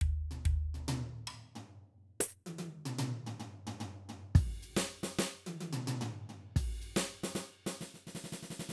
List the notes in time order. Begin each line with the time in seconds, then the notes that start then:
0.00 mid tom
0.31 mid tom
0.45 mid tom
0.74 mid tom
0.88 mid tom
1.27 floor tom
1.55 floor tom
2.20 high tom
2.46 high tom
2.58 high tom
2.85 mid tom
2.98 mid tom
3.26 floor tom
3.40 floor tom
3.67 floor tom
3.80 floor tom
4.09 floor tom
4.35 kick, ride
4.62 ride
4.76 snare
5.03 snare
5.19 snare
5.46 high tom
5.60 high tom
5.72 mid tom
5.87 mid tom
6.01 floor tom
6.29 floor tom
6.56 kick, ride
6.81 ride
6.96 snare
7.23 snare
7.35 snare
7.66 snare
7.81 snare
7.94 snare
8.07 snare
8.15 snare
8.24 snare
8.32 snare
8.42 snare
8.50 snare
8.59 snare
8.69 snare